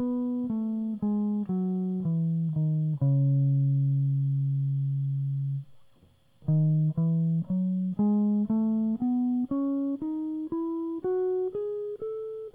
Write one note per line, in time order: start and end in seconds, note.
0.00 0.51 B3
0.50 0.98 A3
1.03 1.46 G#3
1.50 2.07 F#3
2.06 2.98 E3
3.02 5.62 C#3
6.49 6.93 D#3
6.98 7.45 E3
7.51 7.96 F#3
8.00 8.48 G#3
8.50 8.99 A3
9.02 9.48 B3
9.51 9.99 C#4
10.02 10.50 D#4
10.52 11.02 E4
11.04 11.51 F#4
11.55 11.98 G#4
12.01 12.48 A4